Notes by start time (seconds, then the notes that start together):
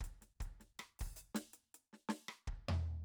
0.01 kick, closed hi-hat
0.22 snare, closed hi-hat
0.41 kick, closed hi-hat
0.60 snare, closed hi-hat
0.79 cross-stick, closed hi-hat
1.00 kick, open hi-hat
1.16 closed hi-hat, hi-hat pedal
1.35 snare, closed hi-hat
1.54 closed hi-hat
1.75 closed hi-hat
1.93 snare
2.09 snare
2.29 cross-stick
2.48 kick
2.69 floor tom